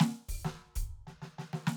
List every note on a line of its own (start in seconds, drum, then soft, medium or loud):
0.01 snare loud
0.29 open hi-hat medium
0.29 kick medium
0.41 hi-hat pedal soft
0.45 snare medium
0.76 open hi-hat loud
0.76 kick medium
1.07 snare soft
1.22 snare medium
1.39 snare medium
1.54 snare medium
1.67 snare loud